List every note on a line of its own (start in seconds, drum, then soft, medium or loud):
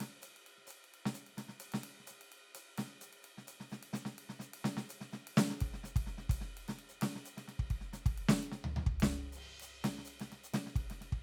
0.01 snare soft
0.01 ride medium
0.23 hi-hat pedal medium
0.23 ride medium
0.37 ride soft
0.58 snare soft
0.68 hi-hat pedal medium
0.68 ride medium
0.85 ride soft
0.95 ride soft
1.06 snare medium
1.15 hi-hat pedal medium
1.15 ride medium
1.27 ride soft
1.36 snare soft
1.36 hi-hat pedal soft
1.36 ride medium
1.49 snare soft
1.60 hi-hat pedal medium
1.60 ride medium
1.73 snare medium
1.73 ride medium
1.84 ride medium
2.00 snare soft
2.08 snare soft
2.08 hi-hat pedal medium
2.08 ride medium
2.22 ride medium
2.33 ride medium
2.55 hi-hat pedal medium
2.55 ride medium
2.77 snare medium
2.77 hi-hat pedal soft
2.77 ride medium
3.02 hi-hat pedal medium
3.02 ride medium
3.14 ride soft
3.23 hi-hat pedal soft
3.23 ride medium
3.38 snare soft
3.48 hi-hat pedal medium
3.48 ride medium
3.61 snare soft
3.70 snare soft
3.70 hi-hat pedal soft
3.84 ride medium
3.94 snare medium
3.94 hi-hat pedal medium
4.06 snare soft
4.17 hi-hat pedal soft
4.17 ride medium
4.30 snare soft
4.42 hi-hat pedal medium
4.54 ride medium
4.63 snare medium
4.63 hi-hat pedal soft
4.78 snare medium
4.90 hi-hat pedal medium
4.90 ride medium
5.01 snare soft
5.12 snare soft
5.12 hi-hat pedal soft
5.28 ride medium
5.37 snare loud
5.37 hi-hat pedal medium
5.51 snare soft
5.59 kick medium
5.59 hi-hat pedal soft
5.59 ride medium
5.74 snare soft
5.84 snare soft
5.84 hi-hat pedal medium
5.97 kick medium
5.97 ride medium
6.07 snare soft
6.18 snare soft
6.30 kick medium
6.30 hi-hat pedal medium
6.30 ride medium
6.42 snare soft
6.58 ride medium
6.69 snare medium
6.69 ride soft
6.80 ride soft
6.90 hi-hat pedal medium
7.02 snare medium
7.02 ride medium
7.16 snare soft
7.26 hi-hat pedal medium
7.26 ride medium
7.38 snare soft
7.38 ride soft
7.49 snare soft
7.49 ride soft
7.60 kick soft
7.71 kick soft
7.71 ride soft
7.81 snare soft
7.94 snare soft
7.94 hi-hat pedal medium
8.07 kick medium
8.07 ride medium
8.18 ride medium
8.29 snare loud
8.42 hi-hat pedal soft
8.42 ride soft
8.52 snare soft
8.65 floor tom medium
8.77 floor tom medium
8.87 kick medium
9.01 snare loud
9.01 ride medium
9.33 hi-hat pedal medium
9.33 ride medium
9.61 hi-hat pedal medium
9.61 ride medium
9.83 snare medium
9.83 hi-hat pedal soft
9.83 ride medium
9.99 snare soft
10.06 hi-hat pedal medium
10.06 ride medium
10.21 snare soft
10.21 ride medium
10.33 snare soft
10.33 ride soft
10.44 hi-hat pedal medium
10.54 snare medium
10.54 ride medium
10.67 snare soft
10.76 kick medium
10.76 ride medium
10.91 snare soft
10.91 ride soft
11.01 snare soft
11.01 ride soft
11.13 kick soft